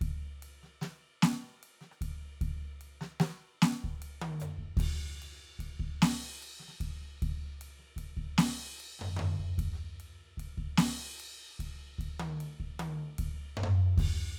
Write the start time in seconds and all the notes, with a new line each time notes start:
0.01 kick, ride
0.42 ride
0.63 snare
0.81 snare, ride
1.22 snare, ride
1.36 snare
1.63 ride
1.81 snare
1.91 cross-stick
2.01 kick, ride
2.41 kick, ride
2.61 snare
2.81 ride
3.01 snare
3.20 snare, ride
3.62 snare, ride
3.84 kick
4.02 ride
4.21 high tom
4.40 hi-hat pedal, floor tom
4.58 kick
4.77 kick, ride, crash
5.22 ride
5.59 kick, ride
5.79 kick
6.02 snare, crash
6.42 ride
6.59 snare
6.68 snare
6.80 kick, ride
7.02 snare
7.22 kick, ride
7.42 snare
7.61 ride
7.79 snare
7.96 kick, ride
8.17 kick
8.38 snare, crash
8.80 ride
8.99 floor tom, high tom
9.17 floor tom, high tom
9.39 kick
9.58 kick, ride
9.73 snare
9.81 snare
10.00 ride
10.19 snare
10.37 kick, ride
10.58 kick
10.78 snare, crash
11.20 ride
11.59 kick, ride
11.79 snare
11.98 kick, ride
12.20 high tom
12.40 ride
12.60 kick
12.79 high tom, ride
13.18 kick, ride
13.57 floor tom
13.63 floor tom
13.97 kick, crash